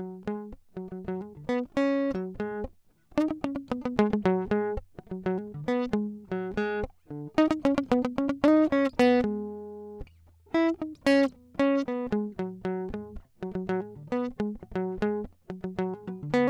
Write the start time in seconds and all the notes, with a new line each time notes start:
0.01 F#3
0.29 G#3
0.78 F#3
0.94 F#3
1.09 F#3
1.23 G#3
1.50 B3
1.78 C#4
2.16 F#3
2.41 G#3
3.19 D#4
3.30 D#4
3.45 C#4
3.57 C#4
3.73 B3
3.87 B3
4.00 G#3
4.15 G#3
4.26 F#3
4.52 G#3
5.13 F#3
5.27 F#3
5.39 G#3
5.57 D3
5.69 B3
5.94 G#3
6.33 F#3
6.59 G#3
7.12 D3
7.39 D#4
7.52 D#4
7.66 C#4
7.79 C#4
7.93 B3
8.06 B3
8.19 C#4
8.30 C#4
8.45 D#4
8.74 C#4
9.00 B3
9.26 G#3
10.56 E4
10.83 D#4
11.07 C#4
11.25 C4
11.61 C#4
11.89 B3
12.14 G#3
12.40 F#3
12.66 F#3
12.95 G#3
13.44 F#3
13.57 F#3
13.70 F#3
13.82 G#3
13.97 D3
14.41 G#3
14.77 F#3
15.03 G#3
15.51 F#3
15.65 F#3
15.80 F#3
15.95 G#3
16.09 F#3
16.25 D3
16.35 B3